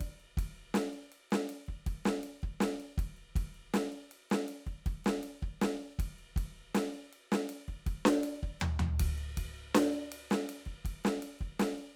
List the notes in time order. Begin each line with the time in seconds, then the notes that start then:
0.01 kick, ride
0.20 ride
0.38 kick, ride
0.56 ride
0.75 snare, ride
0.94 ride
1.12 ride
1.31 snare, ride
1.50 ride
1.67 kick, ride
1.87 kick, ride
2.05 snare, ride
2.24 ride
2.43 kick, ride
2.61 snare, ride
2.80 ride
2.98 kick, ride
3.17 ride
3.36 kick, ride
3.55 ride
3.74 snare, ride
3.93 ride
4.12 ride
4.31 snare, ride
4.49 ride
4.67 kick, ride
4.86 kick, ride
5.05 snare, ride
5.24 ride
5.43 kick, ride
5.62 snare, ride
5.99 kick, ride
6.19 ride
6.37 kick, ride
6.57 ride
6.75 snare, ride
6.95 ride
7.13 ride
7.32 snare, ride
7.50 ride
7.68 kick, ride
7.87 kick, ride
8.06 snare
8.22 hi-hat pedal, ride
8.43 kick
8.60 hi-hat pedal, floor tom
8.80 floor tom
9.00 kick, ride
9.18 ride
9.38 kick, ride
9.57 ride
9.75 snare, ride
9.94 ride
10.12 ride
10.31 snare, ride
10.50 ride
10.66 kick, ride
10.85 kick, ride
11.05 snare, ride
11.23 ride
11.40 kick, ride
11.60 snare, ride
11.79 ride